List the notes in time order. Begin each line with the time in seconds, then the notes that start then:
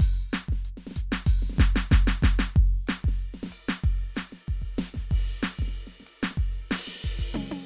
0.01 open hi-hat, kick
0.34 open hi-hat, snare, hi-hat pedal
0.49 kick, snare
0.65 closed hi-hat
0.78 snare
0.87 snare
0.92 snare
0.97 closed hi-hat, kick
1.13 snare
1.27 open hi-hat, kick
1.43 snare
1.50 snare
1.54 snare
1.57 kick, snare
1.60 snare
1.76 snare
1.92 kick, snare, hi-hat pedal
2.08 snare
2.23 kick, snare
2.40 snare
2.57 kick, crash
2.88 snare, hi-hat pedal, ride
3.05 kick, snare
3.19 hi-hat pedal, ride
3.35 snare
3.44 snare
3.47 kick, snare, hi-hat pedal
3.53 ride bell
3.69 snare
3.84 kick, ride
3.99 ride
4.15 snare, hi-hat pedal, ride
4.33 snare
4.48 kick, ride
4.63 kick, ride
4.78 snare, hi-hat pedal, ride
4.95 kick, snare
5.11 kick, ride
5.43 snare, hi-hat pedal, ride
5.60 kick, snare
5.68 snare
5.76 ride
5.88 snare
6.01 kick, snare
6.03 snare, hi-hat pedal
6.07 ride
6.24 snare
6.31 snare
6.38 kick, ride
6.55 ride
6.70 snare, hi-hat pedal, ride
6.88 snare
6.96 snare
7.01 snare, ride
7.04 kick, snare
7.20 kick
7.34 hi-hat pedal, mid tom, high tom
7.52 high tom